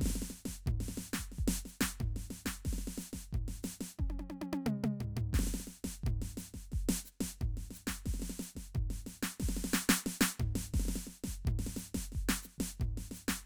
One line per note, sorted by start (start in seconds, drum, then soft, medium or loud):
0.01 kick soft
0.01 snare medium
0.06 snare medium
0.10 snare soft
0.16 snare soft
0.22 snare soft
0.30 snare soft
0.46 kick soft
0.46 snare medium
0.67 kick soft
0.67 floor tom medium
0.81 snare soft
0.89 snare soft
0.98 snare medium
0.98 hi-hat pedal soft
1.14 snare medium
1.19 kick soft
1.32 snare soft
1.39 kick soft
1.48 snare medium
1.66 snare soft
1.66 hi-hat pedal medium
1.81 kick soft
1.81 snare medium
2.01 kick soft
2.01 floor tom medium
2.17 snare soft
2.31 snare soft
2.31 hi-hat pedal soft
2.46 kick soft
2.46 snare medium
2.65 kick soft
2.65 snare soft
2.73 snare soft
2.79 snare soft
2.88 snare soft
2.98 snare soft
2.98 hi-hat pedal medium
3.13 kick soft
3.13 snare soft
3.33 kick soft
3.33 floor tom medium
3.48 snare soft
3.63 snare medium
3.63 hi-hat pedal medium
3.81 snare medium
3.99 kick soft
3.99 high tom soft
4.10 high tom medium
4.20 high tom medium
4.30 high tom medium
4.42 high tom medium
4.53 high tom loud
4.67 mid tom loud
4.84 mid tom loud
5.01 floor tom medium
5.17 floor tom medium
5.34 kick medium
5.34 snare medium
5.39 snare medium
5.44 snare soft
5.47 snare soft
5.54 snare medium
5.60 snare soft
5.67 snare soft
5.67 hi-hat pedal soft
5.85 kick soft
5.85 snare medium
6.04 kick soft
6.04 floor tom medium
6.22 snare soft
6.38 snare soft
6.38 hi-hat pedal medium
6.54 kick soft
6.54 snare soft
6.72 kick soft
6.72 snare soft
6.89 snare medium
7.05 snare soft
7.05 hi-hat pedal medium
7.21 kick soft
7.21 snare medium
7.42 kick soft
7.42 floor tom medium
7.57 snare soft
7.71 snare soft
7.71 hi-hat pedal medium
7.87 kick soft
7.87 snare medium
8.06 kick soft
8.06 snare soft
8.14 snare soft
8.20 snare soft
8.22 snare soft
8.40 snare medium
8.40 hi-hat pedal medium
8.56 kick soft
8.56 snare soft
8.75 kick soft
8.75 floor tom medium
8.91 snare soft
9.07 snare soft
9.07 hi-hat pedal soft
9.23 snare medium
9.40 kick soft
9.40 snare medium
9.49 snare medium
9.57 snare soft
9.65 snare medium
9.74 snare medium
9.90 snare loud
10.07 snare medium
10.21 snare loud
10.40 kick soft
10.40 floor tom medium
10.56 snare medium
10.74 kick medium
10.74 snare soft
10.80 snare soft
10.85 kick soft
10.85 snare soft
10.89 snare medium
10.96 snare soft
11.07 snare soft
11.24 kick soft
11.24 snare medium
11.46 kick soft
11.46 floor tom medium
11.59 snare soft
11.67 snare soft
11.77 snare medium
11.77 hi-hat pedal medium
11.95 kick soft
11.95 snare medium
12.12 kick soft
12.12 snare soft
12.29 snare medium
12.42 snare soft
12.42 hi-hat pedal medium
12.59 kick soft
12.59 snare medium
12.80 kick soft
12.80 floor tom medium
12.98 snare soft
13.12 snare soft
13.12 hi-hat pedal medium
13.29 kick soft
13.29 snare medium